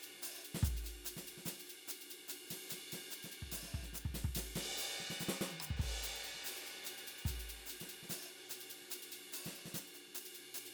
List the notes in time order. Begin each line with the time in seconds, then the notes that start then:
0.01 hi-hat pedal, ride
0.15 snare
0.23 hi-hat pedal, ride
0.36 ride
0.42 hi-hat pedal, ride
0.55 snare
0.63 kick, hi-hat pedal, ride
0.78 ride
0.85 hi-hat pedal, ride
1.06 hi-hat pedal, ride
1.17 snare, ride
1.25 hi-hat pedal, ride
1.38 snare
1.46 snare, hi-hat pedal, ride
1.60 ride
1.66 hi-hat pedal
1.70 ride
1.89 hi-hat pedal, ride
2.02 ride
2.07 hi-hat pedal, ride
2.21 snare
2.29 hi-hat pedal, ride
2.48 snare, hi-hat pedal, ride
2.70 snare, hi-hat pedal, ride
2.90 hi-hat pedal, ride
2.94 snare
3.11 hi-hat pedal, ride
3.23 snare, ride
3.32 ride
3.43 kick
3.52 snare, hi-hat pedal, ride
3.64 snare
3.75 kick
3.84 snare, ride
3.94 snare, hi-hat pedal, ride
4.06 kick
4.15 snare, hi-hat pedal, ride
4.25 kick
4.36 snare, hi-hat pedal, ride
4.56 snare, hi-hat pedal, ride
4.78 hi-hat pedal, ride
4.88 snare
4.98 snare, hi-hat pedal
5.11 snare
5.20 snare, hi-hat pedal
5.29 snare
5.42 snare
5.51 high tom
5.61 hi-hat pedal, floor tom
5.71 kick
5.78 kick, hi-hat pedal, crash
5.82 ride
6.04 hi-hat pedal, ride
6.16 ride
6.24 hi-hat pedal, ride
6.35 snare
6.45 hi-hat pedal, ride
6.57 ride
6.67 ride
6.76 snare
6.85 hi-hat pedal, ride
6.98 ride
7.08 ride
7.19 open hi-hat
7.26 kick, hi-hat pedal, ride
7.40 ride
7.50 ride
7.58 snare
7.64 snare, hi-hat pedal
7.70 ride
7.81 snare, ride
7.90 ride
8.03 snare
8.10 snare, hi-hat pedal, ride
8.23 ride
8.29 hi-hat pedal, ride
8.50 hi-hat pedal, ride
8.61 ride
8.71 ride
8.82 snare
8.91 hi-hat pedal, ride
9.03 ride
9.13 ride
9.26 snare
9.33 hi-hat pedal, ride
9.45 snare, ride
9.56 ride
9.66 snare
9.75 snare, hi-hat pedal, ride
9.88 ride
9.95 hi-hat pedal, ride
10.08 snare
10.16 hi-hat pedal, ride
10.26 ride
10.35 ride
10.47 snare
10.55 hi-hat pedal, ride
10.66 ride